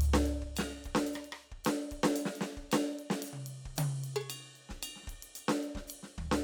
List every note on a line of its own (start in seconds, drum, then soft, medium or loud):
0.01 hi-hat pedal medium
0.01 ride medium
0.14 snare loud
0.26 ride medium
0.42 kick soft
0.56 snare medium
0.56 hi-hat pedal medium
0.56 ride bell loud
0.84 kick soft
0.84 ride soft
0.95 snare loud
1.07 ride bell medium
1.13 cross-stick medium
1.13 hi-hat pedal medium
1.25 ride soft
1.32 cross-stick medium
1.52 kick soft
1.64 snare loud
1.64 hi-hat pedal medium
1.64 ride loud
1.91 kick soft
1.91 ride soft
2.03 snare loud
2.16 hi-hat pedal medium
2.16 ride bell medium
2.25 snare medium
2.36 ride medium
2.41 snare medium
2.57 kick soft
2.72 snare loud
2.72 hi-hat pedal medium
2.72 ride bell loud
2.99 ride soft
3.10 snare loud
3.22 hi-hat pedal medium
3.22 ride loud
3.33 high tom medium
3.46 ride medium
3.66 kick soft
3.76 hi-hat pedal medium
3.76 high tom loud
3.76 ride loud
4.04 ride medium
4.16 percussion loud
4.21 percussion soft
4.30 hi-hat pedal medium
4.30 ride bell loud
4.56 ride soft
4.69 kick soft
4.69 snare soft
4.82 hi-hat pedal medium
4.82 ride bell loud
4.96 snare soft
5.03 snare soft
5.07 kick soft
5.07 snare soft
5.07 ride medium
5.13 kick soft
5.23 ride medium
5.35 hi-hat pedal medium
5.35 ride bell medium
5.48 snare loud
5.63 ride soft
5.75 kick soft
5.75 snare soft
5.88 hi-hat pedal medium
5.88 ride loud
6.03 snare soft
6.18 kick soft
6.18 floor tom medium
6.24 kick soft
6.32 snare loud